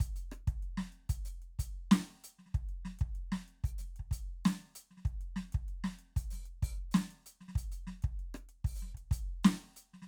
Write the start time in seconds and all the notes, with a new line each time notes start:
0.01 closed hi-hat, kick
0.17 closed hi-hat
0.32 cross-stick
0.48 kick, closed hi-hat
0.63 closed hi-hat
0.78 snare
0.93 closed hi-hat
1.10 open hi-hat, kick
1.26 hi-hat pedal
1.43 closed hi-hat
1.60 open hi-hat, kick
1.92 snare, hi-hat pedal
2.25 closed hi-hat
2.39 snare
2.47 snare
2.51 snare
2.55 kick, closed hi-hat
2.70 closed hi-hat
2.86 snare
3.00 kick, closed hi-hat
3.16 closed hi-hat
3.33 snare
3.49 closed hi-hat
3.65 open hi-hat, kick
3.79 snare, hi-hat pedal
3.97 kick, closed hi-hat
4.12 open hi-hat, kick
4.46 snare, closed hi-hat, hi-hat pedal
4.65 snare
4.76 closed hi-hat
4.91 snare
4.98 snare
5.06 kick, closed hi-hat
5.22 closed hi-hat
5.37 snare
5.53 kick, closed hi-hat
5.63 kick
5.69 closed hi-hat
5.85 snare
6.00 closed hi-hat
6.17 open hi-hat, kick
6.31 snare, hi-hat pedal
6.46 closed hi-hat
6.63 open hi-hat, kick
6.92 snare, hi-hat pedal
7.12 closed hi-hat
7.27 closed hi-hat
7.41 snare
7.49 snare
7.56 closed hi-hat, kick
7.73 closed hi-hat
7.88 snare
8.03 kick, closed hi-hat
8.20 closed hi-hat
8.35 cross-stick
8.50 closed hi-hat
8.65 open hi-hat, kick
8.77 hi-hat pedal
8.83 snare
8.95 kick, closed hi-hat
9.12 open hi-hat, kick
9.44 snare, hi-hat pedal
9.58 closed hi-hat
9.77 closed hi-hat
9.94 snare
10.03 snare